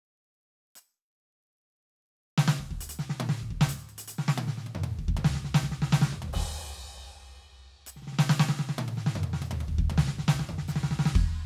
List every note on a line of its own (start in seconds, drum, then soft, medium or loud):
0.76 percussion medium
2.38 snare loud
2.59 kick soft
2.71 kick medium
2.81 percussion loud
2.89 percussion loud
2.99 snare medium
3.10 snare medium
3.20 high tom loud
3.29 snare loud
3.42 kick soft
3.51 kick medium
3.61 snare loud
3.69 percussion loud
3.89 percussion medium
3.98 percussion loud
4.08 percussion loud
4.18 snare medium
4.28 snare loud
4.38 high tom loud
4.47 snare medium
4.58 snare medium
4.66 high tom medium
4.75 mid tom loud
4.83 high tom loud
4.99 kick medium
5.08 kick medium
5.17 floor tom loud
5.25 snare loud
5.35 snare medium
5.45 snare medium
5.54 snare loud
5.64 snare medium
5.72 snare medium
5.82 snare loud
5.92 snare loud
6.02 snare loud
6.12 mid tom medium
6.22 floor tom loud
6.28 kick soft
6.33 kick medium
6.33 crash loud
7.87 percussion loud
7.96 snare soft
8.02 snare soft
8.07 snare medium
8.12 snare soft
8.19 snare loud
8.29 snare loud
8.49 snare loud
8.59 snare medium
8.69 snare medium
8.78 high tom loud
8.88 high tom medium
8.97 snare medium
9.06 snare loud
9.15 mid tom loud
9.23 high tom medium
9.33 snare medium
9.42 high tom loud
9.42 percussion soft
9.51 floor tom loud
9.60 high tom medium
9.68 kick medium
9.90 floor tom loud
9.98 snare loud
10.08 snare medium
10.19 snare medium
10.28 snare loud
10.28 percussion soft
10.39 snare medium
10.49 mid tom loud
10.58 snare medium
10.68 snare medium
10.68 percussion medium
10.76 snare medium
10.83 snare medium
10.91 snare medium
10.99 snare loud
11.06 snare loud
11.15 kick loud
11.15 crash medium